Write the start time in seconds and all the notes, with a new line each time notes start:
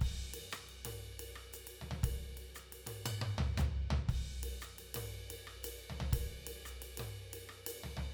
0.01 kick, ride
0.34 ride
0.52 cross-stick, hi-hat pedal
0.69 ride
0.85 mid tom, ride
1.19 ride
1.36 cross-stick
1.53 hi-hat pedal, ride
1.67 ride
1.81 kick, floor tom
1.91 floor tom
2.03 kick, ride
2.37 ride
2.55 cross-stick, hi-hat pedal
2.72 ride
2.87 mid tom, ride
3.06 mid tom, ride bell
3.22 mid tom
3.38 floor tom
3.57 floor tom, hi-hat pedal
3.90 floor tom
4.09 kick, ride
4.43 ride
4.61 cross-stick, hi-hat pedal
4.78 ride
4.94 mid tom, ride
5.30 ride
5.47 cross-stick
5.63 hi-hat pedal, ride
5.79 ride
5.90 floor tom
6.00 floor tom
6.13 kick, ride
6.47 ride
6.65 cross-stick, hi-hat pedal
6.82 ride
6.97 mid tom, ride
7.33 ride
7.49 cross-stick
7.67 hi-hat pedal, ride
7.84 floor tom
7.97 floor tom